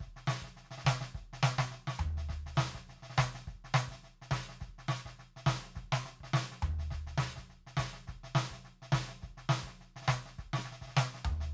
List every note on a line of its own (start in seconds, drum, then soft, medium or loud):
0.01 kick soft
0.01 snare soft
0.08 kick soft
0.17 snare soft
0.27 snare loud
0.27 hi-hat pedal medium
0.42 kick soft
0.42 snare soft
0.57 snare soft
0.65 snare soft
0.71 snare medium
0.78 snare medium
0.85 kick soft
0.85 snare loud
0.85 hi-hat pedal medium
0.91 kick soft
1.01 snare medium
1.15 kick soft
1.15 snare soft
1.33 snare medium
1.43 snare loud
1.43 hi-hat pedal medium
1.59 kick soft
1.59 snare loud
1.72 snare soft
1.88 snare medium
2.00 kick soft
2.00 floor tom loud
2.00 hi-hat pedal medium
2.10 kick soft
2.18 snare soft
2.29 kick medium
2.29 snare soft
2.37 kick soft
2.41 kick soft
2.47 snare soft
2.56 snare loud
2.56 hi-hat pedal medium
2.75 kick soft
2.75 snare soft
2.89 snare soft
2.97 snare soft
3.03 snare soft
3.10 snare soft
3.17 kick soft
3.17 snare loud
3.17 hi-hat pedal medium
3.25 kick soft
3.28 kick soft
3.35 snare soft
3.48 kick soft
3.48 snare soft
3.54 kick soft
3.65 snare soft
3.74 snare loud
3.74 hi-hat pedal medium
3.88 kick soft
3.88 snare soft
4.04 snare soft
4.22 snare soft
4.31 kick soft
4.31 snare loud
4.31 hi-hat pedal medium
4.38 kick soft
4.41 kick soft
4.49 snare soft
4.61 kick soft
4.61 snare soft
4.69 kick soft
4.79 snare soft
4.88 snare loud
4.88 hi-hat pedal medium
5.06 kick soft
5.06 snare soft
5.19 snare soft
5.37 snare soft
5.47 kick soft
5.47 snare loud
5.47 hi-hat pedal medium
5.64 snare soft
5.76 kick soft
5.76 snare soft
5.84 kick soft
5.93 snare loud
6.03 snare soft
6.03 hi-hat pedal medium
6.21 kick soft
6.21 snare soft
6.52 snare soft
6.62 kick soft
6.62 floor tom loud
6.62 hi-hat pedal medium
6.70 kick soft
6.73 kick soft
6.79 snare soft
6.91 kick medium
6.91 snare soft
6.98 kick soft
7.07 snare soft
7.18 snare loud
7.18 hi-hat pedal medium
7.36 kick soft
7.36 snare soft
7.50 snare soft
7.67 snare soft
7.77 kick soft
7.77 snare loud
7.77 hi-hat pedal medium
7.88 kick soft
7.94 snare soft
8.08 kick soft
8.08 snare soft
8.24 snare soft
8.35 snare loud
8.35 hi-hat pedal medium
8.51 kick soft
8.51 snare soft
8.65 snare soft
8.83 snare soft
8.93 kick soft
8.93 snare loud
8.93 hi-hat pedal medium
9.00 kick soft
9.03 kick soft
9.08 snare soft
9.22 kick soft
9.22 snare soft
9.32 kick soft
9.38 snare soft
9.49 snare loud
9.49 hi-hat pedal medium
9.63 kick soft
9.68 snare soft
9.81 snare soft
9.96 snare soft
10.03 snare soft
10.08 kick soft
10.08 snare loud
10.08 hi-hat pedal medium
10.14 kick soft
10.26 snare soft
10.39 kick soft
10.39 snare soft
10.45 kick soft
10.54 snare loud
10.59 cross-stick medium
10.66 snare soft
10.66 hi-hat pedal medium
10.72 snare soft
10.80 snare soft
10.82 kick soft
10.82 snare soft
10.88 snare soft
10.92 snare soft
10.97 snare loud
11.15 snare soft
11.25 kick soft
11.25 hi-hat pedal medium
11.25 floor tom loud
11.34 kick soft
11.37 kick soft
11.41 snare soft